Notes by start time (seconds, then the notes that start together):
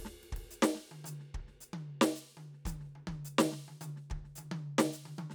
0.05 snare
0.22 snare, ride
0.32 kick
0.36 ride
0.50 hi-hat pedal
0.62 snare
0.75 snare
0.76 snare
0.91 high tom
1.04 hi-hat pedal, high tom
1.20 snare
1.34 kick
1.47 snare
1.60 hi-hat pedal
1.73 high tom
2.01 snare
2.15 hi-hat pedal
2.37 high tom
2.53 snare
2.65 kick, hi-hat pedal, high tom
2.80 snare
2.83 snare
2.95 high tom
3.07 kick, high tom
3.25 hi-hat pedal
3.38 snare, high tom
3.52 snare
3.68 high tom
3.81 hi-hat pedal, high tom
3.96 snare
4.10 kick, high tom
4.24 snare
4.35 hi-hat pedal, high tom
4.51 high tom
4.78 snare, high tom
4.92 hi-hat pedal
5.05 high tom
5.16 hi-hat pedal, high tom
5.30 snare